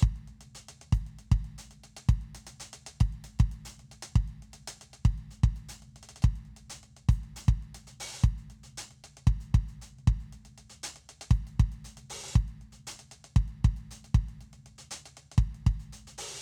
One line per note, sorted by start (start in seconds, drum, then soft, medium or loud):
0.01 kick loud
0.01 closed hi-hat medium
0.01 hi-hat pedal soft
0.16 closed hi-hat soft
0.28 closed hi-hat soft
0.41 closed hi-hat medium
0.55 closed hi-hat medium
0.69 closed hi-hat medium
0.82 closed hi-hat soft
0.93 kick loud
0.93 closed hi-hat medium
1.07 closed hi-hat soft
1.19 closed hi-hat medium
1.32 kick loud
1.32 closed hi-hat soft
1.45 closed hi-hat soft
1.58 closed hi-hat loud
1.71 closed hi-hat medium
1.84 closed hi-hat medium
1.97 closed hi-hat medium
2.09 kick loud
2.09 closed hi-hat medium
2.21 closed hi-hat soft
2.35 closed hi-hat loud
2.47 closed hi-hat medium
2.60 closed hi-hat loud
2.73 closed hi-hat medium
2.87 closed hi-hat medium
3.01 kick loud
3.01 closed hi-hat medium
3.13 closed hi-hat soft
3.24 closed hi-hat medium
3.39 kick loud
3.39 closed hi-hat medium
3.52 closed hi-hat medium
3.65 closed hi-hat loud
3.80 closed hi-hat soft
3.92 closed hi-hat medium
4.03 closed hi-hat loud
4.16 kick loud
4.16 closed hi-hat soft
4.28 closed hi-hat soft
4.43 closed hi-hat soft
4.54 closed hi-hat medium
4.68 closed hi-hat loud
4.81 closed hi-hat medium
4.93 closed hi-hat medium
5.05 kick loud
5.05 closed hi-hat medium
5.18 closed hi-hat soft
5.31 closed hi-hat medium
5.44 kick loud
5.44 closed hi-hat soft
5.56 closed hi-hat medium
5.69 closed hi-hat loud
5.82 closed hi-hat soft
5.96 closed hi-hat soft
6.03 closed hi-hat medium
6.09 closed hi-hat medium
6.16 closed hi-hat medium
6.23 kick loud
6.23 closed hi-hat medium
6.36 closed hi-hat soft
6.45 closed hi-hat soft
6.57 closed hi-hat medium
6.70 closed hi-hat loud
6.83 closed hi-hat soft
6.97 closed hi-hat soft
7.09 closed hi-hat medium
7.09 kick loud
7.24 closed hi-hat soft
7.36 closed hi-hat loud
7.49 kick loud
7.49 closed hi-hat soft
7.63 closed hi-hat soft
7.75 closed hi-hat loud
7.87 closed hi-hat medium
8.00 open hi-hat loud
8.13 open hi-hat medium
8.22 kick loud
8.22 hi-hat pedal soft
8.26 closed hi-hat medium
8.38 closed hi-hat soft
8.50 closed hi-hat medium
8.64 closed hi-hat medium
8.78 closed hi-hat loud
8.91 closed hi-hat soft
9.04 closed hi-hat medium
9.17 closed hi-hat soft
9.27 kick loud
9.27 closed hi-hat soft
9.41 closed hi-hat medium
9.55 kick loud
9.55 closed hi-hat soft
9.68 closed hi-hat medium
9.82 closed hi-hat medium
9.99 closed hi-hat soft
10.08 kick loud
10.08 closed hi-hat soft
10.20 closed hi-hat soft
10.33 closed hi-hat medium
10.45 closed hi-hat medium
10.58 closed hi-hat medium
10.70 closed hi-hat medium
10.84 closed hi-hat loud
10.96 closed hi-hat soft
11.09 closed hi-hat medium
11.21 closed hi-hat medium
11.31 kick loud
11.31 closed hi-hat medium
11.47 closed hi-hat medium
11.60 kick loud
11.60 closed hi-hat soft
11.72 closed hi-hat medium
11.85 closed hi-hat loud
11.97 closed hi-hat medium
12.10 open hi-hat loud
12.23 open hi-hat medium
12.34 kick loud
12.34 closed hi-hat medium
12.34 hi-hat pedal soft
12.48 closed hi-hat soft
12.61 closed hi-hat soft
12.73 closed hi-hat medium
12.87 closed hi-hat loud
12.99 closed hi-hat medium
13.12 closed hi-hat medium
13.24 closed hi-hat soft
13.36 kick loud
13.36 closed hi-hat soft
13.48 closed hi-hat soft
13.65 kick loud
13.65 closed hi-hat soft
13.77 closed hi-hat medium
13.91 closed hi-hat loud
14.05 closed hi-hat medium
14.15 kick loud
14.15 closed hi-hat soft
14.29 closed hi-hat soft
14.41 closed hi-hat medium
14.53 closed hi-hat soft
14.66 closed hi-hat soft
14.78 closed hi-hat medium
14.91 closed hi-hat loud
15.06 closed hi-hat medium
15.17 closed hi-hat soft
15.32 closed hi-hat soft
15.38 kick loud
15.38 closed hi-hat soft
15.55 closed hi-hat soft
15.67 kick loud
15.67 closed hi-hat medium
15.80 closed hi-hat medium
15.93 closed hi-hat loud
16.07 open hi-hat medium
16.18 open hi-hat loud
16.35 open hi-hat soft